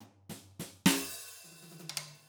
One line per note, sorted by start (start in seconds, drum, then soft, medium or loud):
0.01 floor tom medium
0.29 snare medium
0.29 floor tom medium
0.59 snare medium
0.59 floor tom soft
0.86 open hi-hat loud
0.86 snare loud
1.07 snare soft
1.44 high tom soft
1.51 high tom soft
1.63 high tom soft
1.71 high tom medium
1.79 high tom medium
1.89 high tom medium
1.97 high tom loud